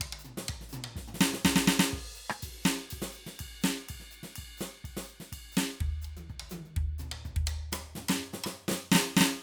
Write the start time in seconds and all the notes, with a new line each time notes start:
0.01 kick, high tom
0.08 kick
0.13 high tom
0.20 hi-hat pedal
0.25 mid tom
0.38 snare
0.49 kick, mid tom
0.57 kick
0.62 snare
0.70 snare, hi-hat pedal
0.74 mid tom
0.85 mid tom
0.96 kick, snare
1.03 kick
1.08 floor tom
1.15 snare, hi-hat pedal
1.21 snare
1.34 snare
1.46 kick, snare
1.53 kick, snare
1.67 snare, hi-hat pedal
1.80 snare
1.93 kick, crash
2.00 kick
2.05 kick
2.16 hi-hat pedal
2.30 cross-stick
2.43 kick, ride
2.50 kick
2.64 snare, hi-hat pedal
2.91 kick, ride
2.99 kick, snare
3.13 hi-hat pedal, ride
3.27 snare
3.34 hi-hat pedal
3.40 kick, ride bell
3.62 snare, hi-hat pedal
3.89 kick, ride bell
3.97 kick
4.01 snare
4.12 hi-hat pedal, ride
4.24 snare
4.36 kick, ride bell
4.58 snare, hi-hat pedal
4.85 kick, ride bell
4.91 kick
4.97 snare
5.04 hi-hat pedal
5.09 ride
5.21 snare
5.33 kick, ride bell
5.53 hi-hat pedal
5.58 snare
5.81 kick, mid tom
5.89 kick
6.02 hi-hat pedal, high tom
6.17 high tom
6.30 kick, high tom
6.37 kick, high tom
6.50 hi-hat pedal, high tom
6.66 high tom
6.77 kick, mid tom
6.85 kick
6.99 hi-hat pedal, mid tom
7.12 mid tom
7.26 kick, mid tom
7.32 kick
7.37 mid tom
7.47 hi-hat pedal, mid tom
7.73 snare, hi-hat pedal, floor tom
7.96 snare, floor tom
8.09 snare, floor tom
8.34 snare, floor tom
8.44 snare, floor tom
8.69 snare
8.72 snare
8.92 snare
8.96 snare
9.17 snare
9.22 snare